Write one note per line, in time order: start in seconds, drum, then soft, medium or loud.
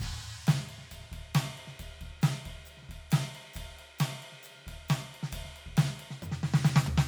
0.01 kick soft
0.01 percussion soft
0.01 crash loud
0.09 kick soft
0.14 cross-stick soft
0.14 snare soft
0.47 snare loud
0.47 ride loud
0.47 percussion medium
0.69 ride medium
0.79 snare soft
0.91 kick soft
0.91 ride medium
0.91 percussion soft
1.00 snare soft
1.04 snare soft
1.12 kick soft
1.12 ride medium
1.18 kick soft
1.35 snare loud
1.35 ride loud
1.35 percussion soft
1.45 snare soft
1.58 ride soft
1.68 snare soft
1.80 kick soft
1.80 ride medium
1.80 percussion soft
1.85 kick soft
2.01 kick soft
2.01 ride soft
2.08 kick soft
2.22 snare loud
2.22 ride loud
2.22 percussion soft
2.46 kick soft
2.46 ride medium
2.52 kick soft
2.56 snare soft
2.66 ride soft
2.66 percussion soft
2.78 snare soft
2.83 snare soft
2.89 kick soft
2.89 ride medium
2.95 kick soft
3.11 snare loud
3.11 ride loud
3.11 percussion medium
3.35 ride medium
3.49 snare soft
3.54 kick soft
3.54 ride medium
3.54 percussion medium
3.61 kick soft
3.61 snare soft
3.71 snare soft
3.79 ride medium
3.99 snare medium
3.99 ride loud
3.99 percussion medium
4.11 snare soft
4.23 ride soft
4.33 snare soft
4.43 ride medium
4.43 percussion medium
4.51 snare soft
4.56 snare soft
4.59 snare soft
4.62 snare soft
4.65 kick soft
4.65 snare soft
4.65 ride medium
4.73 kick soft
4.89 snare loud
4.89 ride loud
4.89 percussion medium
5.15 ride medium
5.23 snare medium
5.33 kick soft
5.33 ride loud
5.33 percussion medium
5.45 snare soft
5.50 snare soft
5.57 ride medium
5.67 kick soft
5.77 snare loud
5.77 ride loud
5.77 percussion medium
5.85 snare soft
6.00 ride medium
6.11 snare soft
6.23 mid tom medium
6.23 percussion medium
6.32 snare medium
6.44 snare medium
6.54 snare loud
6.65 snare loud
6.65 percussion medium
6.76 snare loud
6.87 floor tom loud
6.98 snare loud